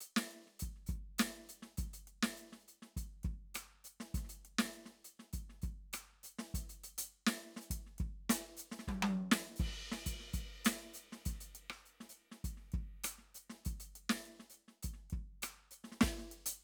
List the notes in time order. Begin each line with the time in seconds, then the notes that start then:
0.00 closed hi-hat
0.16 snare
0.31 closed hi-hat
0.47 snare
0.59 closed hi-hat, kick
0.76 snare
0.82 snare
0.86 open hi-hat, kick
0.95 kick
1.18 closed hi-hat, snare
1.27 snare
1.49 closed hi-hat
1.62 snare
1.77 closed hi-hat, kick, snare
1.83 snare
1.87 kick, snare
1.91 closed hi-hat, snare
2.07 closed hi-hat
2.23 snare
2.37 closed hi-hat
2.52 snare
2.59 hi-hat pedal
2.68 closed hi-hat
2.82 snare
2.97 closed hi-hat, kick
3.04 snare
3.23 kick, closed hi-hat
3.33 kick
3.54 closed hi-hat, cross-stick
3.84 hi-hat pedal
4.00 snare
4.14 closed hi-hat, kick, snare
4.23 kick, snare
4.29 closed hi-hat, snare
4.34 snare
4.45 closed hi-hat
4.58 snare
4.65 snare
4.73 closed hi-hat
4.86 snare
4.93 snare
5.04 closed hi-hat
5.19 snare
5.33 closed hi-hat, kick
5.49 snare
5.54 snare
5.62 closed hi-hat, kick
5.93 closed hi-hat, cross-stick
6.23 closed hi-hat, hi-hat pedal
6.38 snare
6.54 closed hi-hat, kick, snare
6.62 kick, snare
6.67 closed hi-hat, snare
6.70 snare
6.73 snare
6.84 closed hi-hat
6.98 closed hi-hat
7.26 snare
7.56 snare
7.61 hi-hat pedal
7.70 kick, closed hi-hat
7.86 snare
7.98 kick, closed hi-hat
8.09 kick
8.29 closed hi-hat, snare
8.57 closed hi-hat, hi-hat pedal
8.71 snare
8.79 snare
8.87 kick, snare, high tom
9.02 high tom
9.31 snare
9.56 kick, hi-hat pedal, crash
9.91 snare
10.06 closed hi-hat, kick
10.20 snare
10.26 snare
10.33 closed hi-hat, kick, snare
10.64 closed hi-hat, snare
10.94 closed hi-hat, hi-hat pedal
11.12 snare
11.25 closed hi-hat, kick, snare
11.35 kick, snare
11.40 closed hi-hat, snare
11.46 snare
11.55 closed hi-hat
11.70 cross-stick
11.85 closed hi-hat
12.00 snare
12.09 hi-hat pedal
12.15 closed hi-hat
12.31 snare
12.44 closed hi-hat, kick
12.57 snare
12.61 snare
12.64 snare
12.72 kick, closed hi-hat
12.82 kick
13.03 closed hi-hat, cross-stick
13.18 snare
13.34 hi-hat pedal
13.50 snare
13.63 closed hi-hat, kick, snare
13.75 kick
13.80 closed hi-hat
13.95 closed hi-hat
14.09 snare
14.25 closed hi-hat
14.39 snare
14.50 hi-hat pedal
14.54 closed hi-hat
14.68 snare
14.83 closed hi-hat, kick
14.93 snare
14.98 snare
15.10 kick, closed hi-hat
15.42 closed hi-hat, cross-stick
15.71 hi-hat pedal
15.84 snare
15.92 snare
16.00 kick, snare
16.09 kick
16.18 snare
16.31 closed hi-hat
16.46 closed hi-hat